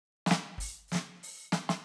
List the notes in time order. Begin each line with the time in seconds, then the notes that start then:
0.27 snare
0.31 snare
0.58 open hi-hat, kick
0.88 snare, hi-hat pedal
0.95 snare
1.23 open hi-hat
1.53 snare
1.70 snare